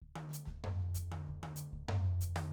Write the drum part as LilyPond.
\new DrumStaff \drummode { \time 4/4 \tempo 4 = 95 bd16 tommh16 <sn hhp>16 <sn bd>16 tomfh16 sn16 <sn hhp bd>16 tommh16 <sn bd>16 tommh16 <hhp sn>16 <sn bd>16 tomfh16 sn16 <sn bd hhp>16 <ss tommh>16 | }